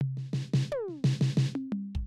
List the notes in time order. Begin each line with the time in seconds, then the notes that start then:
0.02 floor tom
0.17 snare
0.33 snare
0.54 snare
0.71 high tom
0.88 snare
1.04 snare
1.21 snare
1.37 snare
1.55 high tom
1.72 mid tom
1.95 kick